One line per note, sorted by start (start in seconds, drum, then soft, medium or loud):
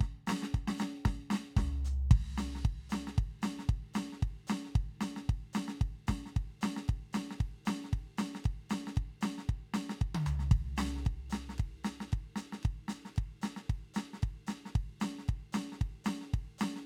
0.01 kick medium
0.01 snare soft
0.27 snare medium
0.27 hi-hat pedal medium
0.29 snare loud
0.43 snare medium
0.54 kick soft
0.54 snare soft
0.68 snare medium
0.79 snare medium
0.79 hi-hat pedal medium
1.05 kick medium
1.05 snare medium
1.31 snare medium
1.31 hi-hat pedal medium
1.34 snare medium
1.57 kick medium
1.57 snare medium
1.57 floor tom loud
1.85 hi-hat pedal medium
2.11 kick loud
2.11 crash medium
2.38 snare medium
2.38 hi-hat pedal medium
2.38 ride medium
2.55 snare soft
2.65 kick medium
2.65 ride soft
2.90 snare medium
2.90 hi-hat pedal medium
2.90 ride soft
3.07 snare soft
3.18 kick medium
3.18 ride soft
3.42 snare medium
3.42 hi-hat pedal medium
3.42 ride medium
3.59 snare soft
3.69 kick medium
3.69 ride soft
3.94 snare medium
3.94 hi-hat pedal medium
3.94 ride medium
4.13 snare soft
4.23 kick soft
4.23 ride soft
4.47 snare medium
4.47 hi-hat pedal medium
4.47 ride soft
4.65 snare soft
4.76 kick medium
4.76 ride soft
5.01 snare medium
5.01 hi-hat pedal medium
5.01 ride soft
5.17 snare soft
5.29 kick medium
5.29 ride soft
5.54 snare medium
5.54 hi-hat pedal medium
5.54 ride soft
5.68 snare soft
5.81 kick medium
5.81 ride soft
6.07 kick soft
6.07 snare medium
6.07 hi-hat pedal medium
6.07 ride medium
6.26 snare soft
6.37 kick soft
6.37 ride soft
6.62 snare medium
6.62 hi-hat pedal medium
6.62 ride medium
6.77 snare soft
6.89 kick medium
6.89 ride soft
7.13 snare medium
7.13 hi-hat pedal medium
7.13 ride medium
7.31 snare soft
7.41 kick soft
7.41 ride soft
7.66 snare medium
7.66 hi-hat pedal medium
7.66 ride medium
7.84 snare soft
7.93 kick soft
7.93 ride soft
8.18 snare medium
8.18 hi-hat pedal medium
8.18 ride medium
8.35 snare soft
8.45 kick soft
8.45 ride soft
8.70 snare medium
8.70 hi-hat pedal medium
8.70 ride medium
8.87 snare soft
8.96 kick soft
8.96 ride soft
9.21 snare medium
9.21 hi-hat pedal medium
9.21 ride soft
9.38 snare soft
9.49 kick soft
9.49 ride soft
9.74 snare medium
9.74 hi-hat pedal medium
9.74 ride medium
9.90 snare medium
10.01 kick soft
10.01 ride soft
10.15 high tom loud
10.26 floor tom loud
10.26 hi-hat pedal medium
10.40 snare soft
10.52 kick loud
10.52 ride medium
10.77 snare loud
10.77 hi-hat pedal medium
10.77 ride medium
10.96 snare soft
11.06 kick soft
11.06 ride soft
11.30 snare medium
11.30 hi-hat pedal medium
11.30 ride medium
11.49 snare soft
11.59 kick soft
11.59 ride medium
11.84 snare medium
11.84 hi-hat pedal medium
11.84 ride medium
12.01 snare soft
12.13 kick soft
12.13 ride soft
12.36 snare medium
12.36 hi-hat pedal medium
12.36 ride soft
12.53 snare soft
12.63 kick medium
12.63 ride soft
12.89 snare medium
12.89 hi-hat pedal medium
12.89 ride medium
13.05 snare soft
13.17 kick soft
13.17 ride soft
13.42 snare medium
13.42 hi-hat pedal medium
13.42 ride soft
13.57 snare soft
13.70 kick soft
13.70 ride soft
13.94 snare medium
13.94 hi-hat pedal medium
13.94 ride medium
14.14 snare soft
14.23 kick soft
14.23 ride soft
14.47 snare medium
14.47 hi-hat pedal medium
14.47 ride medium
14.66 snare soft
14.76 kick medium
14.76 ride medium
15.01 snare medium
15.01 hi-hat pedal medium
15.01 ride medium
15.19 snare soft
15.29 kick soft
15.29 ride soft
15.53 snare medium
15.53 hi-hat pedal medium
15.53 ride medium
15.72 snare soft
15.81 kick soft
15.81 ride soft
16.05 snare medium
16.05 hi-hat pedal medium
16.05 ride medium
16.22 snare soft
16.34 kick soft
16.34 ride medium
16.59 snare loud
16.59 hi-hat pedal medium
16.59 ride medium
16.76 snare soft